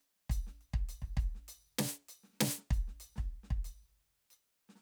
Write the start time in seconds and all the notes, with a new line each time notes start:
0.01 closed hi-hat
0.15 snare
0.30 closed hi-hat, kick
0.47 snare
0.61 closed hi-hat
0.74 kick, snare
0.89 closed hi-hat
1.02 kick, snare
1.17 closed hi-hat, kick
1.35 snare
1.48 closed hi-hat
1.79 snare
2.09 closed hi-hat
2.24 snare
2.29 snare
2.33 snare
2.37 snare
2.41 snare
2.58 snare
2.71 closed hi-hat, kick
2.88 snare
3.00 closed hi-hat
3.16 kick, snare
3.33 closed hi-hat
3.44 snare
3.51 kick
3.65 closed hi-hat, kick
3.81 snare
4.30 hi-hat pedal
4.69 snare
4.76 snare